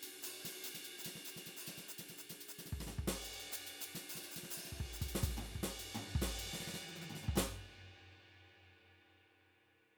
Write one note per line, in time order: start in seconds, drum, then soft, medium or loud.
0.01 hi-hat pedal soft
0.01 ride loud
0.23 hi-hat pedal loud
0.23 ride loud
0.45 snare soft
0.45 ride loud
0.64 hi-hat pedal medium
0.64 ride loud
0.75 snare soft
0.75 ride medium
0.85 ride medium
0.99 hi-hat pedal medium
1.05 snare soft
1.05 ride loud
1.16 snare soft
1.25 hi-hat pedal medium
1.25 ride medium
1.37 snare soft
1.37 ride medium
1.46 snare soft
1.46 ride medium
1.57 hi-hat pedal medium
1.67 snare soft
1.67 ride medium
1.78 snare soft
1.78 ride medium
1.89 hi-hat pedal loud
1.99 snare soft
1.99 ride medium
2.09 snare soft
2.09 ride medium
2.18 hi-hat pedal medium
2.30 snare soft
2.30 ride medium
2.41 ride medium
2.49 hi-hat pedal medium
2.59 snare soft
2.59 ride medium
2.66 snare soft
2.66 ride medium
2.73 kick soft
2.81 snare soft
2.81 floor tom soft
2.87 snare soft
2.87 floor tom medium
2.99 kick soft
3.08 snare medium
3.08 ride medium
3.22 hi-hat pedal medium
3.22 ride medium
3.34 ride soft
3.40 ride medium
3.45 snare soft
3.52 hi-hat pedal loud
3.52 ride medium
3.66 hi-hat pedal soft
3.66 ride medium
3.81 hi-hat pedal loud
3.81 ride medium
3.95 snare soft
3.95 hi-hat pedal soft
3.95 ride medium
4.10 hi-hat pedal medium
4.10 ride medium
4.16 snare soft
4.16 ride medium
4.24 ride medium
4.32 hi-hat pedal medium
4.36 snare soft
4.36 ride medium
4.44 snare soft
4.51 hi-hat pedal loud
4.51 ride medium
4.58 snare soft
4.58 ride medium
4.65 snare soft
4.65 ride medium
4.72 kick soft
4.79 kick soft
4.79 hi-hat pedal soft
4.79 ride medium
4.86 snare soft
4.94 snare soft
4.94 hi-hat pedal medium
5.02 kick soft
5.02 ride medium
5.08 hi-hat pedal soft
5.08 ride medium
5.15 snare medium
5.22 kick medium
5.22 hi-hat pedal medium
5.22 ride loud
5.30 snare soft
5.37 floor tom medium
5.44 snare soft
5.51 snare soft
5.56 kick soft
5.63 snare medium
5.63 ride medium
5.80 ride medium
5.86 snare soft
5.95 floor tom loud
6.01 snare soft
6.09 snare soft
6.15 kick medium
6.22 snare medium
6.22 ride medium
6.39 ride medium
6.46 snare soft
6.54 snare medium
6.61 snare soft
6.68 snare soft
6.74 snare medium
6.83 high tom soft
6.89 high tom medium
6.96 high tom medium
7.02 high tom medium
7.10 floor tom medium
7.15 snare soft
7.23 floor tom medium
7.29 kick soft
7.36 snare loud
7.36 floor tom medium